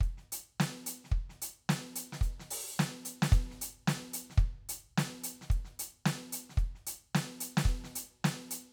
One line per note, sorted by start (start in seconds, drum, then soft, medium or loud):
0.01 kick medium
0.01 closed hi-hat soft
0.18 snare soft
0.32 closed hi-hat loud
0.60 snare loud
0.87 closed hi-hat loud
1.05 snare soft
1.12 kick medium
1.30 snare soft
1.42 closed hi-hat loud
1.70 snare loud
1.96 closed hi-hat loud
2.13 snare medium
2.21 closed hi-hat soft
2.21 kick medium
2.40 snare soft
2.51 open hi-hat loud
2.76 snare loud
2.76 hi-hat pedal soft
3.06 closed hi-hat loud
3.22 snare loud
3.32 kick loud
3.32 closed hi-hat medium
3.51 snare soft
3.62 closed hi-hat loud
3.88 snare loud
4.14 closed hi-hat loud
4.30 snare soft
4.38 kick loud
4.38 closed hi-hat soft
4.69 closed hi-hat loud
4.98 snare loud
5.24 closed hi-hat loud
5.42 snare soft
5.50 kick medium
5.50 closed hi-hat soft
5.65 snare soft
5.80 closed hi-hat loud
6.06 snare loud
6.33 closed hi-hat loud
6.50 snare soft
6.58 kick medium
6.58 closed hi-hat soft
6.75 snare soft
6.87 closed hi-hat loud
7.15 snare loud
7.41 closed hi-hat loud
7.57 snare loud
7.66 kick medium
7.66 closed hi-hat soft
7.84 snare soft
7.96 closed hi-hat loud
8.25 snare loud
8.51 closed hi-hat loud